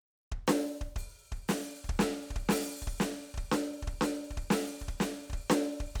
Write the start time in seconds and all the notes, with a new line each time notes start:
0.32 kick
0.47 open hi-hat, snare
0.81 kick
0.96 open hi-hat, kick
1.32 kick
1.48 open hi-hat, snare
1.84 kick
1.89 kick
1.99 open hi-hat, snare
2.30 kick
2.36 kick
2.49 open hi-hat, snare
2.82 kick
2.87 kick
3.00 open hi-hat, snare
3.34 kick
3.38 kick
3.52 open hi-hat, snare
3.57 open hi-hat
3.82 kick
3.87 kick
4.01 open hi-hat, snare
4.31 kick
4.37 kick
4.50 open hi-hat, snare
4.81 kick
4.88 kick
5.00 open hi-hat, snare
5.30 kick
5.33 kick
5.50 open hi-hat, snare
5.80 kick
5.95 kick, crash